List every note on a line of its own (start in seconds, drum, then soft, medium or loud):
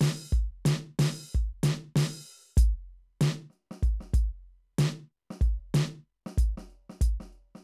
0.01 open hi-hat loud
0.01 snare loud
0.32 kick medium
0.32 hi-hat pedal soft
0.66 closed hi-hat loud
0.66 snare loud
0.99 open hi-hat loud
0.99 snare loud
1.34 kick medium
1.34 hi-hat pedal soft
1.63 closed hi-hat loud
1.63 snare loud
1.96 open hi-hat loud
1.96 snare loud
2.56 closed hi-hat loud
2.56 kick medium
2.56 hi-hat pedal medium
3.21 closed hi-hat loud
3.21 snare loud
3.50 snare soft
3.50 closed hi-hat soft
3.71 snare soft
3.83 kick medium
3.83 closed hi-hat soft
4.01 snare soft
4.14 closed hi-hat medium
4.14 kick medium
4.79 closed hi-hat loud
4.79 snare loud
5.31 snare soft
5.41 kick medium
5.41 closed hi-hat soft
5.74 closed hi-hat loud
5.74 snare loud
6.26 snare soft
6.38 closed hi-hat medium
6.38 kick medium
6.58 snare soft
6.70 closed hi-hat soft
6.90 snare soft
7.01 closed hi-hat loud
7.01 kick medium
7.20 snare soft
7.33 closed hi-hat soft
7.55 snare soft